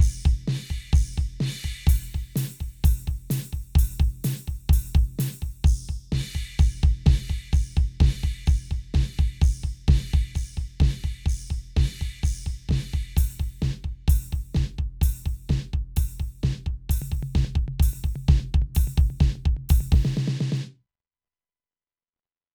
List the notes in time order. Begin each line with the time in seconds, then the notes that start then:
0.01 kick, crash
0.27 kick
0.50 snare, crash
0.72 kick
0.95 kick, crash
1.20 kick
1.42 snare, crash
1.66 kick
1.89 open hi-hat, kick
2.16 kick
2.38 open hi-hat, snare
2.62 kick
2.82 snare
2.86 open hi-hat, kick
3.09 kick
3.32 open hi-hat, snare
3.55 kick
3.77 open hi-hat, kick
4.02 kick
4.26 open hi-hat, snare
4.50 kick
4.71 open hi-hat, kick
4.97 kick
5.21 open hi-hat, snare
5.44 kick
5.66 kick, crash
5.91 kick
6.14 kick, snare, crash
6.37 kick
6.61 kick, crash
6.85 kick
7.08 kick, snare, crash
7.32 kick
7.55 kick, crash
7.79 kick
8.02 kick, snare, crash
8.25 kick
8.48 kick, crash
8.73 kick
8.96 kick, snare, crash
9.21 kick
9.44 kick, crash
9.66 kick
9.90 kick, snare, crash
10.16 kick
10.37 kick, crash
10.59 kick
10.82 kick, snare, crash
11.06 kick
11.28 kick, crash
11.52 kick
11.79 kick, snare, crash
12.03 kick
12.25 kick, crash
12.48 kick
12.71 kick, snare, crash
12.96 kick
13.19 open hi-hat, kick
13.42 kick
13.64 kick, snare
13.86 kick
14.10 open hi-hat, kick
14.35 kick
14.57 kick, snare
14.81 kick
15.04 open hi-hat, kick
15.28 kick
15.51 kick, snare
15.75 kick
15.98 open hi-hat, kick
16.22 kick
16.45 kick, snare
16.68 kick
16.92 open hi-hat, kick
17.04 floor tom
17.14 kick
17.25 floor tom
17.37 kick, snare
17.47 floor tom
17.57 kick
17.70 floor tom
17.75 kick
17.82 open hi-hat, kick
17.95 floor tom
18.06 kick
18.18 floor tom
18.30 kick, snare
18.42 floor tom
18.56 kick
18.64 floor tom
18.77 open hi-hat, kick
18.89 floor tom
19.00 kick
19.12 floor tom
19.22 kick, snare
19.38 floor tom
19.48 kick
19.59 floor tom
19.71 open hi-hat, kick
19.83 floor tom
19.94 kick, snare
20.07 snare
20.19 snare
20.30 snare
20.43 snare
20.54 snare, hi-hat pedal